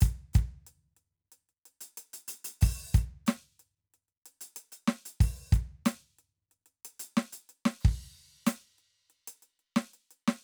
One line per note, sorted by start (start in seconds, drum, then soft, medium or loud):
0.01 closed hi-hat loud
0.01 kick loud
0.33 kick loud
0.33 closed hi-hat loud
0.33 hi-hat pedal loud
0.67 closed hi-hat medium
0.97 closed hi-hat soft
1.32 closed hi-hat medium
1.49 closed hi-hat soft
1.65 closed hi-hat medium
1.81 closed hi-hat medium
1.97 closed hi-hat loud
2.13 closed hi-hat loud
2.28 closed hi-hat loud
2.44 closed hi-hat loud
2.61 open hi-hat loud
2.61 kick loud
2.94 kick loud
2.94 hi-hat pedal loud
2.94 open hi-hat loud
3.26 closed hi-hat medium
3.26 snare loud
3.59 closed hi-hat medium
3.94 closed hi-hat soft
4.08 closed hi-hat soft
4.26 closed hi-hat medium
4.41 closed hi-hat loud
4.56 closed hi-hat loud
4.72 closed hi-hat medium
4.88 snare loud
5.05 closed hi-hat medium
5.20 kick loud
5.20 open hi-hat loud
5.52 kick loud
5.52 closed hi-hat medium
5.52 hi-hat pedal loud
5.85 closed hi-hat loud
5.85 snare loud
6.19 closed hi-hat soft
6.51 closed hi-hat soft
6.66 closed hi-hat soft
6.85 closed hi-hat loud
6.99 closed hi-hat loud
7.17 snare loud
7.32 closed hi-hat medium
7.49 closed hi-hat medium
7.65 snare loud
7.81 kick loud
7.81 crash medium
8.46 closed hi-hat loud
8.46 snare loud
8.78 closed hi-hat soft
9.10 closed hi-hat soft
9.27 closed hi-hat loud
9.42 closed hi-hat medium
9.59 closed hi-hat soft
9.76 snare loud
9.93 closed hi-hat medium
10.11 closed hi-hat medium
10.28 snare loud